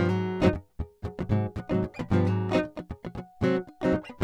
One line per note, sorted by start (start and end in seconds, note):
0.01 0.12 G2
0.01 0.11 F3
0.01 0.09 B3
0.11 0.54 G#2
0.11 0.46 F#3
0.11 0.22 C4
0.43 0.61 F#3
0.43 0.58 C4
0.43 0.65 D#4
1.31 1.52 G#2
1.35 1.54 F#3
1.71 1.91 F#3
1.71 1.90 C4
1.71 1.95 D#4
1.76 1.90 G#2
2.13 2.31 G2
2.13 2.24 F3
2.13 2.28 B3
2.27 2.57 F#3
2.27 2.55 C4
2.32 2.63 G#2
2.55 2.65 F#3
2.55 2.65 C4
2.55 2.74 D#4
3.42 3.64 G#2
3.42 3.65 F#3
3.42 3.65 C4
3.84 4.02 F#3
3.84 4.01 C4
3.84 4.06 D#4